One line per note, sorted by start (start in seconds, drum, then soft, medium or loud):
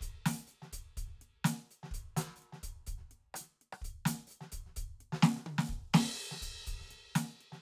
0.01 closed hi-hat medium
0.01 kick soft
0.26 open hi-hat loud
0.26 snare medium
0.47 hi-hat pedal soft
0.51 closed hi-hat soft
0.62 snare soft
0.73 closed hi-hat medium
0.73 kick soft
0.97 closed hi-hat medium
0.97 kick soft
1.03 kick soft
1.03 snare soft
1.11 snare soft
1.14 snare soft
1.16 snare soft
1.22 closed hi-hat soft
1.45 closed hi-hat loud
1.45 snare loud
1.71 closed hi-hat soft
1.83 snare soft
1.91 closed hi-hat medium
1.91 kick soft
2.17 closed hi-hat loud
2.17 snare medium
2.36 hi-hat pedal soft
2.42 closed hi-hat soft
2.53 snare soft
2.63 closed hi-hat medium
2.63 kick soft
2.87 closed hi-hat medium
2.87 kick soft
2.98 snare soft
3.03 snare soft
3.11 closed hi-hat soft
3.34 closed hi-hat loud
3.34 cross-stick medium
3.40 snare soft
3.62 closed hi-hat soft
3.73 cross-stick medium
3.82 closed hi-hat medium
3.82 kick soft
4.06 closed hi-hat loud
4.06 snare medium
4.27 closed hi-hat soft
4.27 hi-hat pedal medium
4.41 snare soft
4.52 closed hi-hat medium
4.52 kick soft
4.66 snare soft
4.76 closed hi-hat medium
4.76 kick soft
4.83 kick soft
5.01 closed hi-hat soft
5.13 snare medium
5.23 snare loud
5.37 snare soft
5.46 high tom medium
5.59 snare medium
5.65 kick soft
5.65 hi-hat pedal medium
5.78 kick soft
5.94 snare loud
5.94 crash loud
6.19 closed hi-hat soft
6.31 snare soft
6.42 closed hi-hat medium
6.42 kick soft
6.61 snare soft
6.67 closed hi-hat medium
6.67 kick soft
6.80 snare soft
6.85 snare soft
6.89 snare soft
6.89 closed hi-hat medium
7.15 closed hi-hat loud
7.15 snare loud
7.41 closed hi-hat soft
7.52 snare soft